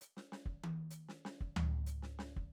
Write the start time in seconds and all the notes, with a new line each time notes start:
0.01 hi-hat pedal
0.17 snare
0.32 snare
0.46 kick
0.64 high tom
0.91 hi-hat pedal
1.09 snare
1.25 snare
1.41 kick
1.56 floor tom
1.86 hi-hat pedal
2.02 snare
2.19 snare
2.36 kick